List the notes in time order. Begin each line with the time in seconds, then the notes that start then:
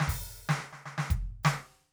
0.00 snare
0.08 open hi-hat, kick
0.47 snare, hi-hat pedal
0.59 snare
0.73 snare
0.85 snare
0.98 snare
1.10 open hi-hat, kick
1.43 snare, hi-hat pedal